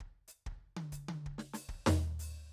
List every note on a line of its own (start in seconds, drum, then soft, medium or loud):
0.00 kick soft
0.28 hi-hat pedal medium
0.46 kick soft
0.77 high tom medium
0.92 kick soft
0.92 hi-hat pedal medium
1.08 high tom medium
1.26 kick soft
1.38 snare soft
1.54 snare soft
1.54 hi-hat pedal medium
1.69 kick soft
1.86 snare loud
1.86 floor tom loud
2.19 hi-hat pedal medium